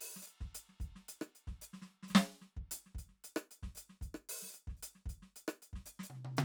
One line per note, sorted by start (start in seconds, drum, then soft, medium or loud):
0.01 open hi-hat medium
0.16 snare soft
0.22 hi-hat pedal medium
0.27 closed hi-hat soft
0.41 kick soft
0.41 snare soft
0.55 closed hi-hat medium
0.69 snare soft
0.80 closed hi-hat soft
0.80 kick soft
0.87 kick soft
0.96 snare soft
1.09 closed hi-hat medium
1.22 cross-stick medium
1.35 closed hi-hat soft
1.47 kick soft
1.47 snare soft
1.62 open hi-hat soft
1.62 hi-hat pedal medium
1.74 snare soft
1.82 snare soft
1.86 snare soft
1.94 snare soft
1.99 snare soft
2.03 snare soft
2.08 kick soft
2.08 snare soft
2.08 hi-hat pedal soft
2.15 snare loud
2.42 snare soft
2.57 kick soft
2.71 closed hi-hat medium
2.86 snare soft
2.95 closed hi-hat soft
2.95 kick soft
3.09 snare soft
3.15 snare soft
3.24 closed hi-hat medium
3.36 cross-stick medium
3.51 closed hi-hat soft
3.63 kick soft
3.63 snare soft
3.75 closed hi-hat medium
3.75 hi-hat pedal soft
3.90 snare soft
4.01 closed hi-hat soft
4.01 kick soft
4.15 cross-stick medium
4.29 open hi-hat medium
4.43 snare soft
4.50 hi-hat pedal soft
4.54 closed hi-hat soft
4.67 kick soft
4.67 snare soft
4.77 hi-hat pedal soft
4.83 closed hi-hat medium
4.95 snare soft
5.06 closed hi-hat soft
5.06 kick soft
5.23 snare soft
5.36 closed hi-hat soft
5.48 cross-stick medium
5.53 hi-hat pedal soft
5.62 closed hi-hat soft
5.73 kick soft
5.73 snare soft
5.86 closed hi-hat soft
5.86 hi-hat pedal medium
6.00 snare soft
6.04 hi-hat pedal medium
6.10 high tom medium
6.15 snare soft
6.25 high tom medium
6.37 hi-hat pedal medium
6.37 high tom loud